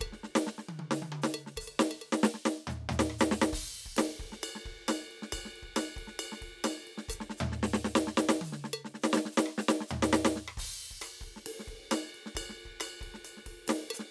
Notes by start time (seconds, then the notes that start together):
0.01 kick, percussion
0.08 kick
0.13 snare
0.24 snare
0.36 snare
0.44 snare, hi-hat pedal
0.59 snare
0.69 high tom
0.80 high tom
0.91 snare
0.96 hi-hat pedal
1.02 high tom
1.12 high tom
1.22 snare, hi-hat pedal
1.34 percussion
1.47 snare
1.57 kick, hi-hat pedal, percussion
1.80 snare
1.91 percussion
2.02 percussion
2.08 hi-hat pedal
2.13 snare
2.24 snare
2.29 hi-hat pedal
2.35 snare
2.46 snare, hi-hat pedal
2.68 hi-hat pedal, floor tom
2.89 hi-hat pedal, floor tom
3.00 snare
3.10 cross-stick
3.19 snare, hi-hat pedal
3.32 snare
3.42 snare
3.53 kick, hi-hat pedal, crash
3.61 kick, cross-stick
3.66 kick
3.86 kick
3.92 kick
3.96 kick, snare, hi-hat pedal, ride
4.20 kick, ride
4.33 snare
4.43 hi-hat pedal, ride bell
4.56 snare
4.66 kick, ride
4.89 snare, hi-hat pedal, ride bell
5.11 ride
5.23 snare
5.33 kick, hi-hat pedal, ride bell
5.40 kick
5.46 snare
5.56 ride
5.63 kick
5.77 snare, hi-hat pedal, ride bell
5.97 kick, ride
6.03 kick
6.08 snare
6.20 hi-hat pedal, ride bell
6.32 snare
6.42 kick, ride
6.47 kick
6.65 snare, hi-hat pedal, ride bell
6.87 ride
6.98 snare
7.09 kick, hi-hat pedal, percussion
7.16 kick
7.21 snare
7.30 snare
7.38 hi-hat pedal, floor tom
7.52 snare
7.63 snare
7.74 snare
7.85 snare
7.96 snare
8.08 snare
8.18 snare
8.29 snare
8.42 hi-hat pedal, high tom
8.53 snare
8.65 snare
8.73 hi-hat pedal, percussion
8.85 snare
8.95 snare
9.03 snare, hi-hat pedal
9.14 snare
9.17 snare
9.26 snare
9.33 hi-hat pedal
9.38 snare
9.46 cross-stick
9.49 cross-stick
9.58 snare, hi-hat pedal
9.69 snare
9.81 snare
9.88 hi-hat pedal, floor tom
10.03 snare
10.11 kick, snare, hi-hat pedal
10.25 snare
10.33 snare, hi-hat pedal
10.48 cross-stick
10.58 kick, hi-hat pedal, crash
10.65 kick
10.91 kick
10.96 kick
11.02 cross-stick, hi-hat pedal, ride bell
11.21 kick, ride
11.27 kick
11.37 snare
11.47 hi-hat pedal, ride
11.60 snare
11.68 kick, ride
11.92 snare, hi-hat pedal, ride bell
12.15 ride
12.26 snare
12.35 kick, hi-hat pedal, ride bell
12.42 kick
12.50 snare
12.61 ride
12.66 kick
12.71 kick
12.81 cross-stick, hi-hat pedal, ride bell
13.01 kick, ride
13.07 kick
13.14 snare
13.25 hi-hat pedal, ride bell
13.37 snare
13.46 kick, ride
13.67 snare, hi-hat pedal, ride
13.91 hi-hat pedal, percussion
14.00 snare